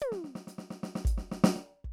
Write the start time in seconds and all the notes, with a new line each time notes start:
0.00 hi-hat pedal, high tom
0.12 snare
0.24 snare
0.35 snare
0.47 snare, hi-hat pedal
0.58 snare
0.70 snare
0.83 snare
0.96 snare
1.05 open hi-hat, kick
1.18 snare
1.32 snare
1.44 snare
1.56 snare
1.84 kick